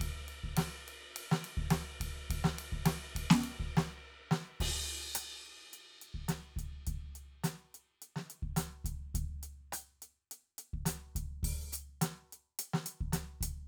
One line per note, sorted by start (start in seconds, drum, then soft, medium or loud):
0.01 kick medium
0.01 ride loud
0.29 ride medium
0.44 kick medium
0.58 snare medium
0.58 ride loud
0.89 ride medium
1.17 ride loud
1.32 snare loud
1.45 ride medium
1.58 kick medium
1.71 snare loud
1.71 ride loud
2.01 kick medium
2.01 ride loud
2.31 kick medium
2.31 ride loud
2.45 snare loud
2.59 ride loud
2.73 kick medium
2.86 snare loud
2.86 ride loud
3.16 kick medium
3.16 ride loud
3.31 snare loud
3.44 ride medium
3.60 kick medium
3.78 snare loud
4.32 snare loud
4.61 kick medium
4.61 crash loud
5.16 cross-stick medium
5.16 closed hi-hat loud
5.46 closed hi-hat soft
5.74 closed hi-hat medium
6.02 closed hi-hat medium
6.15 kick soft
6.29 snare medium
6.29 closed hi-hat medium
6.57 kick medium
6.57 closed hi-hat medium
6.87 kick medium
6.87 closed hi-hat medium
7.16 closed hi-hat medium
7.44 closed hi-hat medium
7.44 snare medium
7.75 closed hi-hat medium
8.03 closed hi-hat medium
8.17 snare medium
8.31 closed hi-hat medium
8.43 kick medium
8.57 closed hi-hat loud
8.57 snare medium
8.85 kick medium
8.85 closed hi-hat medium
9.15 kick medium
9.15 closed hi-hat medium
9.44 closed hi-hat medium
9.73 closed hi-hat loud
9.73 cross-stick medium
10.03 closed hi-hat medium
10.32 closed hi-hat medium
10.59 closed hi-hat medium
10.74 kick medium
10.86 closed hi-hat loud
10.86 snare medium
11.16 kick medium
11.16 closed hi-hat medium
11.44 kick medium
11.44 open hi-hat loud
11.73 hi-hat pedal loud
12.02 snare medium
12.02 closed hi-hat loud
12.33 closed hi-hat medium
12.60 closed hi-hat loud
12.74 snare medium
12.87 closed hi-hat medium
13.01 kick medium
13.13 snare medium
13.13 closed hi-hat loud
13.42 kick medium
13.42 closed hi-hat loud